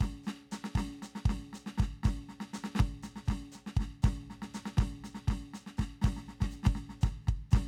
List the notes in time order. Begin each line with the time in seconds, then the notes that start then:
0.01 kick, snare, hi-hat pedal
0.24 snare, hi-hat pedal
0.52 snare, hi-hat pedal
0.65 snare
0.75 kick, snare, hi-hat pedal
0.78 snare
1.03 snare, hi-hat pedal
1.16 snare
1.26 kick, snare
1.30 snare
1.54 snare, hi-hat pedal
1.67 snare
1.78 kick, snare
1.82 snare
2.04 kick, snare, hi-hat pedal
2.07 snare
2.29 snare
2.41 snare
2.54 snare, hi-hat pedal
2.64 snare
2.76 snare
2.80 kick, snare
3.03 snare, hi-hat pedal
3.16 snare
3.26 kick, snare, hi-hat pedal
3.31 snare
3.52 snare, hi-hat pedal
3.67 snare
3.75 kick, hi-hat pedal
3.80 snare
3.81 snare
4.03 kick, snare, hi-hat pedal
4.06 snare
4.31 snare
4.43 snare
4.54 snare, hi-hat pedal
4.66 snare
4.78 kick, snare, hi-hat pedal
4.81 snare
5.04 snare, hi-hat pedal
5.15 snare
5.28 kick, snare
5.31 snare
5.54 snare, hi-hat pedal
5.67 snare
5.78 kick, snare, hi-hat pedal
5.81 snare
6.02 kick, snare, hi-hat pedal
6.06 snare
6.17 snare
6.26 snare, hi-hat pedal
6.41 kick, snare
6.42 snare
6.51 hi-hat pedal
6.64 snare
6.66 kick, snare
6.74 snare, hi-hat pedal
6.90 snare
7.02 kick, snare, hi-hat pedal
7.23 hi-hat pedal
7.28 kick, snare
7.51 kick, snare, hi-hat pedal
7.55 snare